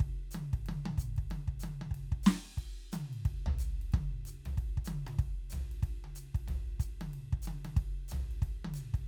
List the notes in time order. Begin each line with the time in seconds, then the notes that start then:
0.01 kick, ride
0.31 kick, hi-hat pedal, ride
0.36 high tom
0.54 kick, ride
0.67 high tom, ride
0.87 high tom
0.99 kick, hi-hat pedal, ride
1.18 kick, ride
1.31 high tom, ride
1.49 kick
1.61 hi-hat pedal, high tom, ride
1.82 high tom
1.92 kick, ride
2.13 kick
2.24 snare, hi-hat pedal, crash
2.58 kick, ride
2.93 hi-hat pedal, high tom, ride
3.14 ride
3.26 kick, ride
3.47 floor tom
3.60 hi-hat pedal, ride
3.82 ride
3.93 kick, high tom, ride
4.26 hi-hat pedal, ride
4.46 floor tom, ride
4.58 kick, ride
4.78 kick
4.86 hi-hat pedal, high tom, ride
5.08 high tom, ride
5.20 kick, ride
5.51 floor tom, hi-hat pedal, ride
5.72 ride
5.84 kick, ride
6.05 high tom
6.16 hi-hat pedal, ride
6.35 kick, ride
6.49 floor tom, ride
6.81 kick, hi-hat pedal, ride
7.02 high tom, ride
7.14 ride
7.33 kick
7.43 hi-hat pedal, ride
7.48 kick, high tom
7.66 high tom, ride
7.77 kick, ride
8.09 floor tom, hi-hat pedal, ride
8.32 ride
8.43 kick, ride
8.66 high tom
8.75 hi-hat pedal, ride
8.95 kick, ride